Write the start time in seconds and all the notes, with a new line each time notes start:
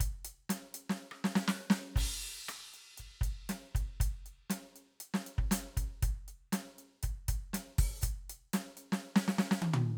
0.01 kick, closed hi-hat
0.26 closed hi-hat
0.50 snare, closed hi-hat
0.75 closed hi-hat
0.90 snare
1.12 cross-stick
1.25 snare
1.36 snare
1.49 snare
1.71 snare
1.97 kick, crash
2.25 open hi-hat
2.49 cross-stick, closed hi-hat
2.75 closed hi-hat
2.98 kick, closed hi-hat
3.22 kick, closed hi-hat
3.50 snare, closed hi-hat
3.76 kick, closed hi-hat
4.01 kick, closed hi-hat
4.27 closed hi-hat
4.51 snare, closed hi-hat
4.77 closed hi-hat
5.01 closed hi-hat
5.15 snare
5.27 closed hi-hat
5.39 kick
5.52 closed hi-hat, snare
5.78 kick, closed hi-hat
6.03 kick, closed hi-hat
6.29 closed hi-hat
6.53 snare, closed hi-hat
6.79 closed hi-hat
7.04 kick, closed hi-hat
7.29 kick, closed hi-hat
7.54 snare, closed hi-hat
7.79 kick, open hi-hat
8.02 kick, closed hi-hat, hi-hat pedal
8.30 closed hi-hat
8.54 snare, open hi-hat
8.78 open hi-hat
8.93 snare
9.17 snare
9.29 snare
9.39 snare
9.52 snare
9.63 high tom
9.75 mid tom